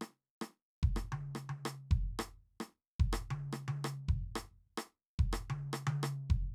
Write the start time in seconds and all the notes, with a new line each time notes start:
0.01 cross-stick
0.41 cross-stick
0.83 kick
0.96 cross-stick
1.12 high tom
1.35 cross-stick
1.49 high tom
1.65 cross-stick
1.91 kick
2.19 cross-stick
2.60 cross-stick
3.00 kick
3.13 cross-stick
3.30 high tom
3.53 cross-stick
3.68 high tom
3.84 cross-stick
4.08 kick
4.35 cross-stick
4.77 cross-stick
5.19 kick
5.33 cross-stick
5.50 high tom
5.73 cross-stick
5.87 high tom
6.03 cross-stick
6.30 kick